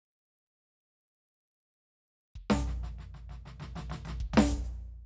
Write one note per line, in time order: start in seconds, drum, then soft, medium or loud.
2.35 kick soft
2.50 snare loud
2.50 floor tom loud
2.67 snare soft
2.67 floor tom soft
2.83 snare soft
2.83 floor tom soft
2.98 snare soft
2.98 floor tom soft
3.14 snare soft
3.14 floor tom soft
3.29 snare soft
3.29 floor tom soft
3.45 snare soft
3.45 floor tom soft
3.60 snare soft
3.60 floor tom medium
3.75 snare medium
3.75 floor tom medium
3.90 snare medium
3.90 floor tom medium
4.05 snare medium
4.05 floor tom medium
4.05 hi-hat pedal soft
4.20 kick medium
4.33 floor tom loud
4.33 hi-hat pedal soft
4.37 snare loud
4.51 kick medium
4.64 hi-hat pedal soft